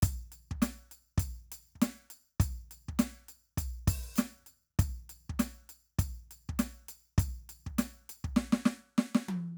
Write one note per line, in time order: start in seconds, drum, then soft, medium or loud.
0.03 kick loud
0.03 percussion loud
0.32 percussion medium
0.51 kick medium
0.62 snare loud
0.62 percussion loud
0.91 percussion medium
1.18 kick loud
1.18 percussion loud
1.52 percussion loud
1.76 kick soft
1.82 snare loud
1.82 percussion loud
2.10 percussion medium
2.40 kick loud
2.40 percussion loud
2.71 percussion medium
2.89 kick medium
2.99 snare loud
2.99 percussion loud
3.29 percussion medium
3.58 kick medium
3.58 percussion loud
3.88 kick loud
3.88 percussion loud
4.16 percussion loud
4.18 snare loud
4.18 percussion loud
4.46 percussion medium
4.79 kick loud
4.79 percussion loud
5.09 percussion medium
5.30 kick medium
5.39 snare loud
5.39 percussion loud
5.69 percussion medium
5.99 kick loud
5.99 percussion loud
6.31 percussion medium
6.49 kick medium
6.59 snare loud
6.59 percussion loud
6.89 percussion medium
7.18 kick loud
7.18 percussion loud
7.49 percussion medium
7.67 kick medium
7.79 snare loud
7.79 percussion loud
8.09 percussion medium
8.24 kick medium
8.36 snare loud
8.53 snare loud
8.66 snare loud
8.98 snare loud
9.15 snare loud
9.29 high tom loud